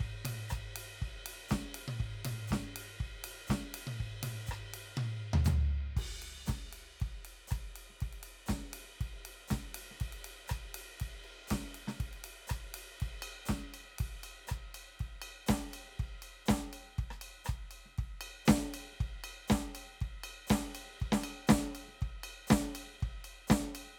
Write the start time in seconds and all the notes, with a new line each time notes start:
0.01 kick
0.26 high tom, ride
0.50 kick, cross-stick, hi-hat pedal
0.77 ride
1.02 kick
1.27 ride
1.49 kick, snare, hi-hat pedal
1.75 ride
1.89 open hi-hat, high tom
2.01 kick
2.25 closed hi-hat, high tom, ride
2.48 kick, hi-hat pedal
2.53 snare
2.77 ride
3.01 kick
3.25 ride
3.48 kick, snare, hi-hat pedal
3.75 ride
3.88 closed hi-hat, high tom
4.01 kick
4.24 high tom, ride
4.47 kick, hi-hat pedal
4.52 cross-stick
4.74 ride
4.98 high tom
5.34 floor tom
5.45 floor tom, hi-hat pedal
5.97 kick, crash
6.23 ride
6.47 kick, snare, hi-hat pedal, ride
6.73 ride
7.01 kick, ride
7.26 ride
7.48 cross-stick, hi-hat pedal
7.52 kick, ride
7.76 ride
7.90 snare
8.01 kick, ride
8.13 ride
8.24 ride
8.47 kick, snare, hi-hat pedal, ride
8.74 ride
9.01 kick, ride
9.26 ride
9.48 snare, hi-hat pedal, ride
9.53 kick
9.75 ride
9.91 snare
10.01 kick, ride
10.13 ride
10.25 ride
10.48 kick, cross-stick, hi-hat pedal, ride
10.75 ride
11.01 kick, ride
11.25 ride
11.48 kick, snare, hi-hat pedal, ride
11.75 ride
11.88 snare
12.01 kick, ride
12.14 ride
12.25 ride
12.48 kick, cross-stick, hi-hat pedal, ride
12.75 ride
13.01 kick, ride
13.23 ride bell
13.46 snare, hi-hat pedal, ride
13.51 kick
13.75 ride bell
13.99 kick, ride
14.24 ride bell
14.48 cross-stick, hi-hat pedal, ride
14.52 kick
14.75 ride bell
15.00 kick, ride
15.22 ride bell
15.47 kick, snare, hi-hat pedal, ride
15.74 ride bell
16.00 kick, ride
16.23 ride bell
16.47 snare, hi-hat pedal, ride
16.51 kick
16.74 ride bell
16.88 snare
16.99 kick, ride
17.11 cross-stick
17.22 ride bell
17.45 cross-stick, hi-hat pedal, ride
17.50 kick
17.72 ride bell
17.86 snare
17.99 kick, ride
18.22 ride bell
18.46 snare, hi-hat pedal, ride
18.51 kick
18.75 ride bell
19.01 kick, ride
19.25 ride bell
19.48 kick, snare, hi-hat pedal, ride
19.76 ride bell
20.01 kick, ride
20.24 ride bell
20.48 kick, snare, hi-hat pedal, ride
20.76 ride bell
21.01 kick, ride
21.13 snare
21.24 ride bell
21.48 snare, hi-hat pedal, ride
21.53 kick
21.76 ride bell
21.88 snare
22.02 kick, ride
22.24 ride bell
22.48 snare, hi-hat pedal, ride
22.53 kick
22.76 ride bell
23.01 kick, ride
23.25 ride bell
23.48 kick, snare, hi-hat pedal, ride
23.76 ride bell